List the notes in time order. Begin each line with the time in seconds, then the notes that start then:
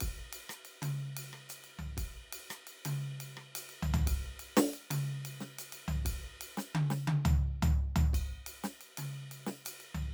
0.01 kick, ride
0.33 ride
0.50 cross-stick, hi-hat pedal
0.65 ride
0.83 mid tom, ride
1.17 ride
1.34 cross-stick
1.50 hi-hat pedal, ride
1.65 ride
1.79 floor tom
1.98 kick, ride
2.33 ride
2.51 cross-stick, hi-hat pedal
2.67 ride
2.86 mid tom, ride
3.21 ride
3.38 cross-stick
3.56 hi-hat pedal, ride
3.70 ride
3.83 floor tom
3.94 floor tom
4.07 kick, ride
4.40 ride
4.57 snare, hi-hat pedal
4.74 ride
4.91 mid tom, ride
5.26 ride
5.41 snare
5.59 hi-hat pedal, ride
5.73 ride
5.88 floor tom
6.06 kick, ride
6.42 ride
6.58 snare, hi-hat pedal
6.75 mid tom
6.91 snare
7.08 mid tom
7.26 floor tom
7.63 floor tom, hi-hat pedal
7.96 floor tom
8.14 kick, ride bell
8.47 ride
8.64 snare, hi-hat pedal
8.81 ride
8.98 mid tom, ride
9.32 ride
9.47 snare
9.66 hi-hat pedal, ride
9.81 ride
9.95 floor tom